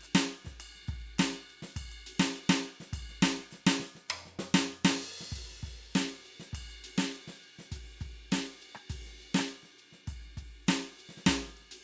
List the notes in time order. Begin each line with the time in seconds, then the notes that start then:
0.01 hi-hat pedal, ride bell
0.15 snare
0.30 ride
0.45 kick, snare
0.60 hi-hat pedal, ride bell
0.75 snare
0.83 snare
0.88 kick, ride
0.95 kick
1.18 snare, hi-hat pedal, ride bell
1.33 snare
1.49 ride
1.62 snare
1.76 kick, hi-hat pedal, ride bell
1.85 kick
1.92 ride bell
2.07 ride
2.20 snare
2.26 cross-stick
2.35 hi-hat pedal, ride
2.50 snare
2.57 snare
2.65 ride
2.80 snare
2.93 kick, hi-hat pedal, ride bell
2.99 kick
3.02 kick
3.09 snare
3.23 snare
3.38 snare
3.51 snare, hi-hat pedal
3.67 snare
3.79 snare, hi-hat pedal
3.95 snare
4.09 hi-hat pedal, floor tom
4.26 snare
4.39 snare
4.43 hi-hat pedal
4.54 snare
4.84 snare, crash
4.91 cross-stick
5.21 snare
5.32 kick, hi-hat pedal
5.36 kick, ride
5.51 snare
5.54 snare
5.63 kick, hi-hat pedal, ride
5.69 kick
5.95 snare, hi-hat pedal, ride
6.05 snare
6.25 hi-hat pedal, ride
6.40 snare
6.53 kick, snare, hi-hat pedal, ride bell
6.61 kick, snare
6.65 snare
6.68 snare, ride bell
6.71 snare
6.84 ride
6.98 snare
7.14 hi-hat pedal, ride
7.28 snare
7.43 ride
7.59 snare
7.72 kick, hi-hat pedal, ride
7.80 kick, snare
8.01 kick, ride
8.32 snare, hi-hat pedal, ride
8.40 cross-stick
8.60 hi-hat pedal, ride
8.75 cross-stick
8.90 kick, hi-hat pedal, ride
8.99 kick
9.06 snare
9.18 hi-hat pedal, ride
9.35 snare
9.39 cross-stick
9.48 hi-hat pedal, ride
9.63 snare
9.70 snare
9.79 ride
9.93 snare
10.03 snare
10.08 kick, hi-hat pedal, ride bell
10.17 kick, snare
10.26 snare
10.30 snare
10.34 kick, snare, hi-hat pedal, ride
10.67 snare, hi-hat pedal, ride
10.97 hi-hat pedal, ride
11.09 snare
11.18 snare
11.27 kick, snare, hi-hat pedal
11.41 snare
11.48 snare
11.53 snare
11.57 snare, ride bell
11.65 snare
11.71 ride